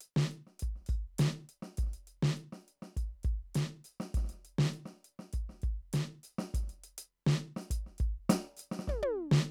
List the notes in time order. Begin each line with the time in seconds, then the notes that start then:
0.00 closed hi-hat
0.16 snare
0.31 closed hi-hat
0.47 snare
0.59 closed hi-hat, kick
0.75 snare
0.81 snare
0.86 open hi-hat, kick
0.95 kick
1.18 closed hi-hat, snare
1.27 snare
1.49 closed hi-hat
1.62 snare
1.77 closed hi-hat, kick, snare
1.83 snare
1.86 kick, snare
1.91 closed hi-hat, snare
2.07 closed hi-hat
2.22 snare
2.37 closed hi-hat
2.52 snare
2.59 hi-hat pedal
2.68 closed hi-hat
2.82 snare
2.96 closed hi-hat, kick
3.04 snare
3.23 kick, closed hi-hat
3.33 kick
3.54 closed hi-hat, snare
3.84 hi-hat pedal
4.00 snare
4.14 closed hi-hat, kick, snare
4.23 kick, snare
4.29 closed hi-hat, snare
4.34 snare
4.45 closed hi-hat
4.58 snare
4.65 snare
4.73 closed hi-hat
4.85 snare
4.93 snare
5.04 closed hi-hat
5.19 snare
5.33 closed hi-hat, kick
5.49 snare
5.54 snare
5.62 closed hi-hat, kick
5.93 closed hi-hat, snare
6.23 closed hi-hat, hi-hat pedal
6.38 snare
6.54 closed hi-hat, kick, snare
6.62 kick, snare
6.67 closed hi-hat, snare
6.70 snare
6.72 snare
6.83 closed hi-hat
6.98 closed hi-hat
7.26 snare
7.56 snare
7.61 hi-hat pedal
7.70 kick, closed hi-hat
7.86 snare
7.98 kick, closed hi-hat
8.09 kick
8.29 closed hi-hat, snare
8.57 closed hi-hat, hi-hat pedal
8.71 snare
8.79 snare
8.87 kick, snare, high tom
9.02 high tom
9.31 snare